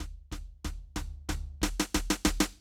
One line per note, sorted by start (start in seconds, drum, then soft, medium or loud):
0.00 kick soft
0.00 snare soft
0.00 floor tom soft
0.32 kick soft
0.32 snare soft
0.32 floor tom medium
0.65 kick soft
0.65 snare medium
0.65 floor tom medium
0.96 kick soft
0.96 snare medium
0.96 floor tom medium
1.29 kick soft
1.29 snare medium
1.29 floor tom medium
1.62 kick medium
1.62 snare loud
1.80 snare loud
1.94 kick soft
1.94 snare loud
2.10 snare loud
2.25 kick medium
2.25 snare loud
2.40 snare loud